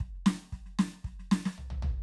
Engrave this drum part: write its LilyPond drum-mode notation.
\new DrumStaff \drummode { \time 4/4 \tempo 4 = 114 <bd sn>16 sn16 sn16 sn16 <bd sn>16 sn16 sn16 sn16 <bd sn>16 sn16 sn16 sn16 tomfh16 tomfh16 tomfh8 | }